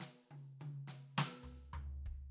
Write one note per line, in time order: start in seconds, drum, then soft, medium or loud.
0.04 snare soft
0.31 high tom soft
0.60 hi-hat pedal soft
0.60 high tom medium
0.88 snare soft
1.17 snare medium
1.17 hi-hat pedal medium
1.43 floor tom soft
1.73 floor tom medium
1.73 hi-hat pedal medium
2.06 kick soft